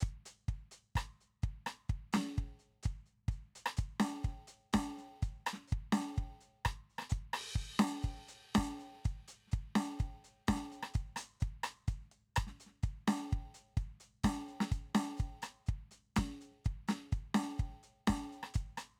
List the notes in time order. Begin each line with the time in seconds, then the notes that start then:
0.00 open hi-hat, kick, hi-hat pedal
0.25 closed hi-hat
0.48 kick, closed hi-hat
0.71 closed hi-hat
0.95 closed hi-hat, kick, cross-stick
1.21 closed hi-hat
1.42 closed hi-hat, kick
1.66 open hi-hat, cross-stick
1.89 closed hi-hat, kick
2.13 closed hi-hat, snare
2.36 closed hi-hat, kick, snare
2.44 snare
2.47 snare
2.59 closed hi-hat
2.83 closed hi-hat, kick
3.06 closed hi-hat
3.28 closed hi-hat, kick
3.55 closed hi-hat
3.66 cross-stick
3.77 closed hi-hat, kick
4.00 closed hi-hat, snare
4.05 snare
4.23 closed hi-hat, kick, snare
4.30 snare
4.47 closed hi-hat
4.73 closed hi-hat, kick, snare
4.78 cross-stick
4.98 closed hi-hat, snare
5.04 snare
5.22 closed hi-hat, kick
5.46 closed hi-hat, cross-stick
5.53 snare
5.67 closed hi-hat, hi-hat pedal
5.72 kick
5.92 closed hi-hat, snare
5.99 snare
6.16 closed hi-hat, kick
6.20 snare
6.40 closed hi-hat
6.65 open hi-hat, kick, cross-stick, hi-hat pedal
6.90 open hi-hat
6.98 cross-stick
7.02 cross-stick
7.09 open hi-hat, kick, hi-hat pedal
7.33 cross-stick, crash
7.54 closed hi-hat, kick, hi-hat pedal
7.79 closed hi-hat, snare
8.02 closed hi-hat, kick
8.18 snare
8.24 snare
8.28 closed hi-hat
8.54 closed hi-hat, kick, snare
8.80 closed hi-hat
8.94 snare
9.05 closed hi-hat, kick
9.28 closed hi-hat
9.47 snare
9.51 closed hi-hat, kick
9.75 closed hi-hat, snare
9.99 closed hi-hat, kick, snare
10.06 snare
10.10 snare
10.24 closed hi-hat
10.47 closed hi-hat, kick, snare
10.55 snare
10.72 closed hi-hat
10.83 cross-stick
10.94 closed hi-hat, kick
11.16 closed hi-hat, cross-stick
11.40 open hi-hat, kick, hi-hat pedal
11.63 closed hi-hat, cross-stick
11.88 closed hi-hat, kick
12.01 snare
12.11 closed hi-hat
12.36 closed hi-hat, kick, cross-stick
12.47 snare
12.60 closed hi-hat
12.66 snare
12.83 closed hi-hat, kick
13.07 closed hi-hat, snare
13.16 snare
13.30 open hi-hat, kick
13.54 closed hi-hat
13.77 closed hi-hat, kick
14.00 closed hi-hat
14.24 closed hi-hat, kick, snare
14.33 snare
14.48 closed hi-hat
14.60 snare
14.72 closed hi-hat, kick
14.95 closed hi-hat, snare
15.02 snare
15.17 closed hi-hat, kick, hi-hat pedal
15.42 closed hi-hat, cross-stick
15.66 closed hi-hat, kick
15.91 closed hi-hat, snare
16.16 closed hi-hat, kick, snare
16.41 closed hi-hat
16.51 snare
16.64 closed hi-hat, kick
16.88 closed hi-hat, snare
17.12 closed hi-hat, kick
17.34 closed hi-hat, snare
17.43 snare
17.58 closed hi-hat, kick
17.69 snare
17.72 snare
17.83 closed hi-hat
18.07 closed hi-hat, kick, snare
18.13 snare
18.32 closed hi-hat
18.43 cross-stick
18.54 closed hi-hat, kick
18.77 closed hi-hat, cross-stick